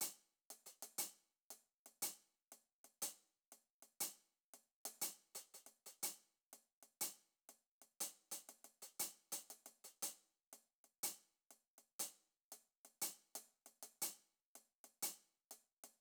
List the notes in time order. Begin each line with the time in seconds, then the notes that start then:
0.01 closed hi-hat
0.50 closed hi-hat
0.66 closed hi-hat
0.83 closed hi-hat
0.98 closed hi-hat
1.51 closed hi-hat
1.86 closed hi-hat
2.02 closed hi-hat
2.52 closed hi-hat
2.84 closed hi-hat
3.02 closed hi-hat
3.52 closed hi-hat
3.83 closed hi-hat
4.01 closed hi-hat
4.54 closed hi-hat
4.85 closed hi-hat
5.02 closed hi-hat
5.35 closed hi-hat
5.54 closed hi-hat
5.66 closed hi-hat
5.86 closed hi-hat
6.03 closed hi-hat
6.53 closed hi-hat
6.83 closed hi-hat
7.01 closed hi-hat
7.49 closed hi-hat
7.82 closed hi-hat
8.01 closed hi-hat
8.32 closed hi-hat
8.49 closed hi-hat
8.64 closed hi-hat
8.82 closed hi-hat
9.00 closed hi-hat
9.32 closed hi-hat
9.50 closed hi-hat
9.66 closed hi-hat
9.84 closed hi-hat
10.03 closed hi-hat
10.53 closed hi-hat
10.84 closed hi-hat
11.03 closed hi-hat
11.51 closed hi-hat
11.78 closed hi-hat
12.00 closed hi-hat
12.52 closed hi-hat
12.85 closed hi-hat
13.02 closed hi-hat
13.35 closed hi-hat
13.66 closed hi-hat
13.83 closed hi-hat
14.02 closed hi-hat
14.55 closed hi-hat
14.84 open hi-hat
15.03 closed hi-hat
15.51 closed hi-hat
15.84 closed hi-hat